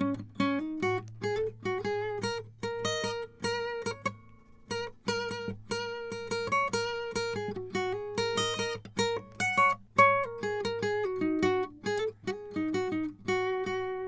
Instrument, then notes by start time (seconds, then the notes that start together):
acoustic guitar
0.02 C#4
0.41 C#4
0.60 D#4
0.83 F#4
1.25 G#4
1.66 F#4
1.85 G#4
2.24 A#4
2.64 A#4
2.85 D#5
3.05 A#4
3.45 A#4
3.87 A#4
4.06 C5
4.71 A#4
5.09 A#4
5.29 A#4
5.72 A#4
6.13 A#4
6.32 A#4
6.53 C#5
6.74 A#4
7.16 A#4
7.37 G#4
7.57 F#4
7.76 F#4
7.93 G#4
8.18 A#4
8.38 D#5
8.60 A#4
9.00 A#4
9.17 C#5
9.41 F#5
9.58 C#5
9.99 C#5
10.24 A#4
10.44 G#4
10.66 A#4
10.83 G#4
11.05 F#4
11.22 D#4
11.43 F#4
11.47 D4
11.87 G#4
12.28 G#4
12.57 D#4
12.75 D4 F#4
12.93 D#4
13.29 F#4
13.68 F#4